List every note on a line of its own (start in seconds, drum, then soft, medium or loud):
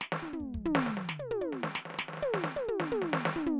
0.01 snare loud
0.12 snare medium
0.22 floor tom medium
0.32 floor tom medium
0.40 kick soft
0.54 kick soft
0.65 floor tom loud
0.75 snare loud
0.86 snare medium
0.97 snare medium
1.09 snare loud
1.19 high tom medium
1.30 mid tom loud
1.41 high tom medium
1.52 snare soft
1.63 snare medium
1.75 snare loud
1.85 snare soft
1.90 snare soft
1.94 snare soft
1.99 snare loud
2.08 snare soft
2.13 snare soft
2.17 snare soft
2.22 high tom loud
2.34 snare medium
2.44 snare medium
2.56 high tom loud
2.68 mid tom loud
2.80 snare medium
2.91 mid tom loud
3.02 snare medium
3.13 snare loud
3.25 snare loud
3.35 floor tom medium
3.46 floor tom loud